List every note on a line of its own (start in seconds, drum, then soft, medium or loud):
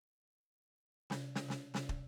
1.10 snare medium
1.10 high tom medium
1.36 snare medium
1.36 high tom medium
1.49 snare medium
1.49 high tom medium
1.74 snare medium
1.74 high tom medium
1.89 kick medium